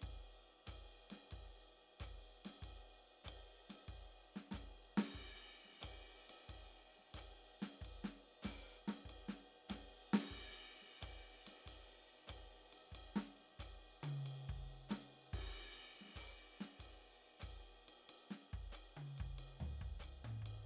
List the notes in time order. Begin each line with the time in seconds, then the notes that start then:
0.01 kick, snare, ride
0.67 kick, hi-hat pedal, ride
1.11 snare, ride
1.32 kick, ride
2.01 kick, hi-hat pedal, ride
2.46 snare, ride
2.63 kick, ride
3.25 kick, hi-hat pedal
3.29 ride
3.70 snare, ride
3.89 kick, ride
4.37 snare
4.52 kick, snare, hi-hat pedal, ride
4.98 snare, ride
5.15 kick
5.65 snare
5.70 snare
5.73 snare
5.75 snare
5.82 kick, hi-hat pedal, ride
6.30 snare, ride
6.50 kick, ride
6.99 snare
7.15 kick, hi-hat pedal, ride
7.63 snare, ride
7.82 kick, ride
8.05 snare
8.43 kick, snare, hi-hat pedal, ride
8.88 snare, ride
9.06 kick
9.10 ride
9.29 snare
9.70 kick, snare, hi-hat pedal, ride
10.14 snare, ride
10.31 kick
10.82 snare
11.02 kick, hi-hat pedal, ride
11.47 snare, ride
11.67 kick, ride
12.28 kick, hi-hat pedal, ride
12.73 ride
12.87 hi-hat pedal
12.92 kick, ride
13.17 snare
13.60 kick, hi-hat pedal, ride
14.04 high tom, ride
14.27 ride
14.50 kick
14.90 snare, hi-hat pedal, ride
15.34 kick, ride
15.56 ride
16.02 snare
16.06 snare
16.09 snare
16.13 kick, snare, hi-hat pedal
16.18 ride
16.61 snare, ride
16.80 kick, ride
17.40 kick, hi-hat pedal, ride
17.89 ride
18.01 hi-hat pedal
18.10 ride
18.31 snare
18.54 kick
18.73 hi-hat pedal, ride
18.97 high tom
19.19 kick, ride
19.39 ride
19.61 floor tom
19.82 kick
20.00 hi-hat pedal
20.05 ride
20.25 mid tom
20.42 kick
20.47 ride